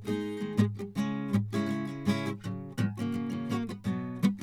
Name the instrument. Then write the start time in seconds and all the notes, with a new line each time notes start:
acoustic guitar
0.06 D#4 G#4
0.11 G#3
0.38 D#4
0.42 D#3 G#3
0.59 G#3
0.97 C#3 G#3 C#4
1.55 C#3 G#3 C#4 E4
1.69 C#3 G#3 C#4
1.87 G#3 C#4 E4
2.07 C#3 G#3 C#4 E4
2.27 E4
2.47 C#3 F#3
2.98 A#3 C#4 F#4
3.03 C#3
3.16 C#3
3.31 C#3 A#3 C#4
3.52 A#3 C#4 F#4
3.86 B2 F#3 B3